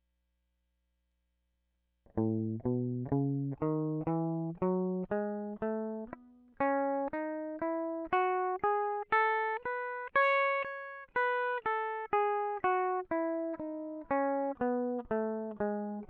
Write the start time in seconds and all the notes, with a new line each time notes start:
2.20 A2
2.67 B2
3.13 C#3
3.63 D#3
4.08 E3
4.63 F#3
5.12 G#3
5.63 A3
6.61 C#4
7.14 D#4
7.62 E4
8.13 F#4
8.64 G#4
9.13 A4
9.66 B4
10.16 C#5
11.17 B4
11.66 A4
12.14 G#4
12.65 F#4
13.12 E4
13.60 D#4
14.11 C#4
14.62 B3
15.12 A3
15.61 G#3